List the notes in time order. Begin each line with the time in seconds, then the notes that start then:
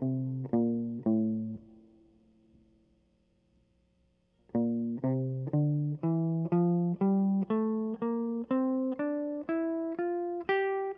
0.03 C3
0.55 A#2
1.08 A2
4.56 A#2
5.05 C3
5.55 D3
6.05 E3
6.54 F3
7.02 G3
7.51 A3
8.03 A#3
8.51 C4
9.00 D4
9.49 E4
9.99 F4
10.50 G4